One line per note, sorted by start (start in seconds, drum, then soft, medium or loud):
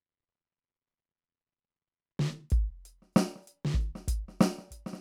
2.19 snare medium
2.50 closed hi-hat medium
2.50 kick medium
2.85 closed hi-hat medium
3.02 snare soft
3.13 snare loud
3.13 hi-hat pedal soft
3.36 snare soft
3.42 hi-hat pedal soft
3.47 closed hi-hat medium
3.65 snare medium
3.74 kick medium
3.81 closed hi-hat soft
3.95 snare soft
4.08 closed hi-hat loud
4.08 kick medium
4.28 snare soft
4.39 snare loud
4.39 hi-hat pedal soft
4.58 snare soft
4.68 kick soft
4.68 snare soft
4.72 closed hi-hat medium
4.86 snare soft
4.93 snare soft